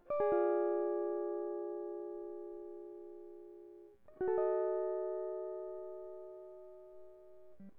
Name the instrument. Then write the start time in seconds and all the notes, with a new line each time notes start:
electric guitar
0.11 D5
0.23 G#4
0.34 F4
4.26 F#4 A4
4.38 D#5